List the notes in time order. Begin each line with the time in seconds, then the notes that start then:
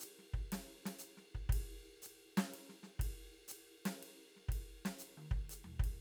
0.01 hi-hat pedal, ride
0.20 snare
0.35 kick
0.53 snare, ride
0.87 snare, ride
1.00 hi-hat pedal
1.05 ride
1.18 snare
1.36 kick
1.50 kick, ride
2.03 hi-hat pedal, ride
2.38 snare, ride
2.55 ride
2.70 snare
2.84 snare
3.00 kick, ride
3.49 hi-hat pedal, ride
3.86 snare, ride
4.04 ride
4.37 snare
4.50 kick, ride
4.86 snare, ride
5.00 hi-hat pedal, ride
5.18 high tom
5.32 kick
5.51 hi-hat pedal, ride
5.65 floor tom
5.81 kick
5.85 ride